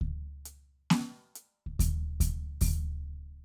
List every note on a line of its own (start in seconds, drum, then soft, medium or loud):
0.01 kick medium
0.46 closed hi-hat medium
0.90 snare loud
1.36 closed hi-hat medium
1.66 kick medium
1.79 closed hi-hat loud
1.79 kick loud
2.20 closed hi-hat loud
2.20 kick loud
2.61 open hi-hat loud
2.61 kick loud